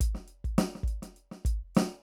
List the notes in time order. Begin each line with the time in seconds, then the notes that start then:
0.00 closed hi-hat, kick
0.15 snare
0.28 closed hi-hat
0.44 kick, closed hi-hat
0.58 closed hi-hat, snare
0.75 snare
0.83 kick
0.88 closed hi-hat
1.02 closed hi-hat, snare
1.16 closed hi-hat
1.31 snare
1.45 open hi-hat, kick
1.75 closed hi-hat, snare, hi-hat pedal
1.82 snare